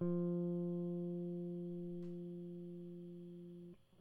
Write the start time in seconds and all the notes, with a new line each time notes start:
0.02 F3